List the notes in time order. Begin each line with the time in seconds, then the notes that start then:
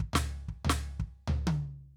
0.00 kick
0.13 snare, floor tom
0.48 kick
0.65 floor tom
0.69 snare
0.99 kick
1.27 floor tom
1.47 high tom